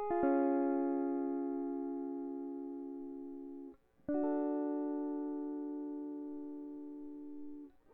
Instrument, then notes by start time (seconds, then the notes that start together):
electric guitar
0.00 G#4
0.11 F4
0.21 C#4
4.09 D4
4.15 F#4
4.25 A4